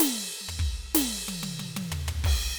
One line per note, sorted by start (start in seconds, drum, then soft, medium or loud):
0.00 snare loud
0.00 crash loud
0.41 high tom soft
0.49 floor tom loud
0.59 kick medium
0.95 snare loud
0.95 crash loud
1.28 high tom loud
1.43 high tom loud
1.59 high tom medium
1.76 high tom loud
1.92 floor tom loud
2.08 floor tom loud
2.24 kick medium
2.24 crash loud